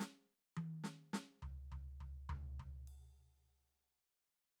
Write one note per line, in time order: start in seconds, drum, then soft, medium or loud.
0.00 snare soft
0.00 hi-hat pedal soft
0.57 high tom medium
0.84 snare soft
1.13 snare medium
1.42 floor tom soft
1.72 floor tom soft
2.00 floor tom soft
2.29 floor tom medium
2.60 floor tom soft
2.88 crash soft